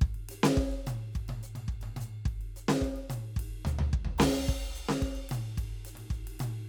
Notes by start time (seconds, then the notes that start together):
0.01 kick, hi-hat pedal, ride
0.15 ride
0.29 hi-hat pedal, ride
0.44 snare
0.58 kick, ride
0.72 ride
0.87 hi-hat pedal, high tom, ride
1.13 kick, hi-hat pedal, ride
1.29 high tom, ride bell
1.43 hi-hat pedal
1.56 high tom, ride bell
1.69 kick, hi-hat pedal
1.82 high tom, ride bell
1.97 high tom, ride bell
2.01 hi-hat pedal
2.26 kick, ride
2.42 ride
2.57 hi-hat pedal, ride bell
2.69 snare
2.82 kick, hi-hat pedal, ride
2.97 ride
3.10 hi-hat pedal, high tom, ride
3.36 kick, hi-hat pedal, ride
3.66 floor tom, hi-hat pedal
3.79 floor tom
3.94 kick
4.05 floor tom
4.19 snare, hi-hat pedal, crash
4.48 kick, hi-hat pedal, ride
4.76 hi-hat pedal, ride
4.89 snare
5.02 kick, hi-hat pedal, ride
5.16 ride
5.30 hi-hat pedal, high tom, ride
5.58 kick, hi-hat pedal, ride
5.86 hi-hat pedal, ride
5.96 high tom, ride
6.11 kick, hi-hat pedal
6.28 ride
6.40 hi-hat pedal, high tom, ride